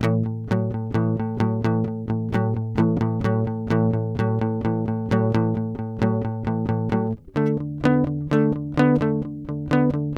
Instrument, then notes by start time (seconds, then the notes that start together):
acoustic guitar
0.01 A2 E3
0.26 A2
0.52 A2 F#3
0.76 A2
0.96 A2 E3
1.21 A2
1.41 A2 F#3
1.66 A2 E3
1.85 A2
2.09 A2 E3
2.34 A2 F#3
2.58 A2
2.79 A2 E3
3.02 A2 E3
3.26 A2 F#3
3.47 A2 E3
3.72 A2 E3
3.94 A2 E3
4.20 A2 F#3
4.40 A2 E3
4.66 A2 E3
4.89 A2
5.12 A2 F#3
5.36 A2 E3
5.56 A2
5.81 A2
6.03 A2 F#3
6.23 A2
6.49 A2 E3
6.70 A2 E3
6.94 A2 F#3
7.37 D3 A3 D4
7.62 D3
7.85 D3 B3
8.05 D3 B3
8.32 D3 A3 D4
8.54 D3
8.79 D3 B3
8.97 A3
9.02 D3 D4
9.23 D3
9.46 D3 A3
9.72 D3 B3
9.91 D3 A3